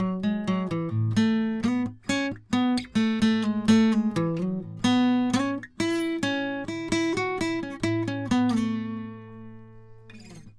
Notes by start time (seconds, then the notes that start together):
0.00 F#3
0.24 G#3
0.48 F#3
0.72 E3
0.91 A2
1.17 A3
1.65 B3
2.10 C#4
2.54 B3
2.96 A3
3.23 A3
3.44 G#3
3.69 A3
3.94 G#3
4.17 E3
4.38 F#3
4.85 B3
5.35 C#4
5.81 E4
6.24 C#4
6.69 E4
6.93 E4
7.18 F#4
7.42 E4
7.64 C#4
7.84 E4
8.09 C#4
8.32 B3
8.51 A3